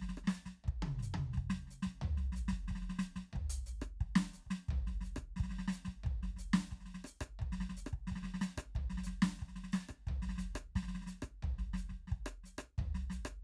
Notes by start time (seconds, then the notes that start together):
0.03 snare
0.10 snare
0.18 cross-stick
0.25 snare
0.28 snare
0.34 hi-hat pedal
0.46 kick, snare
0.65 kick, floor tom
0.83 high tom
1.00 snare
1.04 hi-hat pedal
1.15 kick, high tom
1.34 snare
1.38 kick
1.51 snare
1.68 snare, hi-hat pedal
1.83 kick, snare
2.02 kick, floor tom
2.18 snare
2.33 snare, hi-hat pedal
2.49 snare
2.53 kick
2.69 kick, snare
2.76 snare
2.83 snare
2.90 snare
2.97 snare
3.00 snare, hi-hat pedal
3.17 kick, snare
3.34 kick, floor tom
3.51 closed hi-hat
3.67 hi-hat pedal
3.71 snare
3.82 kick, cross-stick
4.02 kick, snare
4.17 snare
4.34 snare, hi-hat pedal
4.47 kick
4.51 snare
4.69 kick, floor tom
4.88 snare
5.02 snare, hi-hat pedal
5.17 kick, cross-stick
5.37 kick, snare
5.44 snare
5.50 snare
5.52 snare
5.60 snare
5.69 snare
5.73 hi-hat pedal
5.86 kick, snare
6.04 kick, floor tom
6.24 snare
6.37 snare, hi-hat pedal
6.54 kick, snare
6.72 kick, snare
6.81 snare
6.86 snare
6.95 snare
7.05 cross-stick, hi-hat pedal
7.22 kick, cross-stick
7.40 kick, floor tom
7.53 snare
7.61 snare
7.70 snare
7.78 hi-hat pedal
7.87 cross-stick
7.94 kick
8.08 snare
8.12 kick
8.16 snare
8.24 snare
8.35 snare
8.42 snare, hi-hat pedal
8.58 kick, cross-stick
8.76 kick, floor tom
8.91 snare
8.98 snare
9.05 snare, hi-hat pedal
9.23 kick, snare
9.40 kick, snare
9.49 snare
9.57 snare
9.65 snare
9.73 snare, hi-hat pedal
9.90 kick, cross-stick
10.08 kick, floor tom
10.23 snare
10.30 snare
10.37 snare
10.39 snare, hi-hat pedal
10.55 kick, cross-stick
10.76 kick, snare
10.84 snare
10.89 snare
10.96 snare
11.02 snare
11.07 snare, hi-hat pedal
11.23 kick, cross-stick
11.44 kick, floor tom
11.59 snare
11.74 snare, hi-hat pedal
11.90 kick, snare
12.08 snare
12.12 kick
12.27 cross-stick
12.45 snare, hi-hat pedal
12.59 kick, cross-stick
12.79 kick, floor tom
12.96 snare
13.11 snare, hi-hat pedal
13.26 kick, cross-stick